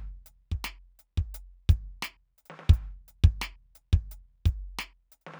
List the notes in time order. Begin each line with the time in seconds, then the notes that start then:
0.26 closed hi-hat
0.52 kick
0.65 closed hi-hat, snare
0.99 closed hi-hat
1.18 kick
1.35 closed hi-hat
1.69 kick, closed hi-hat
2.03 closed hi-hat, snare
2.38 closed hi-hat
2.46 closed hi-hat
2.50 snare
2.60 snare
2.69 kick, snare
2.74 closed hi-hat
3.08 closed hi-hat
3.24 kick
3.42 snare, closed hi-hat
3.76 closed hi-hat
3.93 kick
4.12 closed hi-hat
4.46 kick, closed hi-hat
4.79 snare, closed hi-hat
5.12 closed hi-hat
5.22 closed hi-hat
5.27 snare
5.34 snare